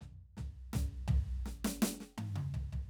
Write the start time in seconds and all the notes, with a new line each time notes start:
0.01 snare, floor tom
0.37 snare, floor tom
0.73 snare, floor tom
1.08 floor tom
1.46 snare
1.64 snare
1.82 snare
2.00 snare
2.18 mid tom
2.36 high tom, percussion
2.54 floor tom
2.72 floor tom